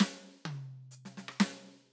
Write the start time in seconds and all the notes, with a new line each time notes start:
0.00 snare
0.46 closed hi-hat, high tom
0.91 hi-hat pedal
1.05 snare
1.18 snare
1.28 cross-stick
1.40 snare